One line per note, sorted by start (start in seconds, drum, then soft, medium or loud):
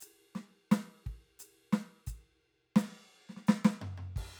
0.01 hi-hat pedal medium
0.01 ride medium
0.35 snare medium
0.35 ride soft
0.72 snare loud
0.72 hi-hat pedal medium
0.72 ride medium
1.07 kick soft
1.07 ride soft
1.40 hi-hat pedal medium
1.40 ride soft
1.73 snare loud
1.73 ride soft
2.07 kick soft
2.07 hi-hat pedal medium
2.07 ride soft
2.42 ride soft
2.76 snare loud
2.76 hi-hat pedal medium
2.76 ride soft
3.30 snare soft
3.37 snare soft
3.44 snare soft
3.44 hi-hat pedal medium
3.49 snare loud
3.65 snare loud
3.82 floor tom medium
3.98 floor tom soft
4.16 kick medium
4.16 crash medium